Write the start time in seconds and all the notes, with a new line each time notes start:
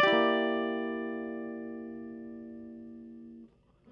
0.00 G4 D5
0.07 E4
0.13 A#3